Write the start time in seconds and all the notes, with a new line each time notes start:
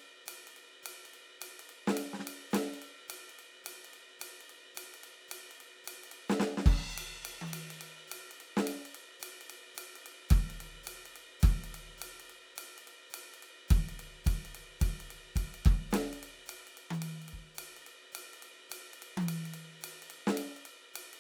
0.01 ride
0.26 hi-hat pedal, ride
0.47 ride
0.57 ride
0.83 hi-hat pedal, ride
1.06 ride
1.14 ride
1.41 hi-hat pedal, ride
1.60 ride
1.69 ride
1.88 snare, hi-hat pedal
1.97 ride
2.14 snare
2.20 snare
2.27 ride
2.51 snare, hi-hat pedal
2.55 ride
2.74 ride
2.82 ride
3.08 hi-hat pedal, ride
3.30 ride
3.39 ride
3.64 hi-hat pedal, ride
3.85 ride
3.94 ride
4.19 hi-hat pedal, ride
4.41 ride
4.50 ride
4.75 hi-hat pedal, ride
4.94 ride
5.04 ride
5.28 hi-hat pedal, ride
5.51 ride
5.61 ride
5.84 hi-hat pedal, ride
6.04 ride
6.12 ride
6.29 snare, hi-hat pedal
6.40 snare
6.58 snare
6.66 kick, crash
6.90 hi-hat pedal
6.98 ride
7.25 ride
7.42 high tom
7.47 hi-hat pedal
7.54 ride
7.71 ride
7.81 ride
8.08 hi-hat pedal
8.12 ride
8.31 ride
8.40 ride
8.57 snare, hi-hat pedal
8.67 ride
8.86 ride
8.95 ride
9.20 hi-hat pedal, ride
9.41 ride
9.50 ride
9.75 hi-hat pedal, ride
9.96 ride
10.06 ride
10.29 kick, hi-hat pedal, ride
10.50 ride
10.61 ride
10.84 hi-hat pedal, ride
11.06 ride
11.16 ride
11.40 kick, hi-hat pedal, ride
11.64 ride
11.75 ride
11.98 hi-hat pedal
12.02 ride
12.20 ride
12.30 ride
12.56 hi-hat pedal, ride
12.78 ride
12.88 ride
13.10 hi-hat pedal
13.14 ride
13.34 ride
13.43 ride
13.68 kick, hi-hat pedal, ride
13.89 ride
14.00 ride
14.25 kick, hi-hat pedal, ride
14.45 ride
14.55 ride
14.80 kick, hi-hat pedal, ride
15.00 ride
15.11 ride
15.35 kick, hi-hat pedal, ride
15.54 ride
15.65 kick, ride
15.91 snare, hi-hat pedal, ride
16.13 ride
16.23 ride
16.46 hi-hat pedal, ride
16.67 ride
16.91 hi-hat pedal, high tom
17.02 ride
17.22 ride
17.28 ride
17.33 kick
17.55 hi-hat pedal, ride
17.77 ride
17.87 ride
18.12 hi-hat pedal, ride
18.34 ride
18.43 ride
18.70 hi-hat pedal, ride
18.94 ride
19.02 ride
19.17 hi-hat pedal, high tom
19.29 ride
19.46 ride
19.54 ride
19.81 hi-hat pedal, ride
20.02 ride
20.10 ride
20.27 snare, hi-hat pedal
20.38 ride
20.57 ride
20.66 ride
20.94 hi-hat pedal, ride
21.13 ride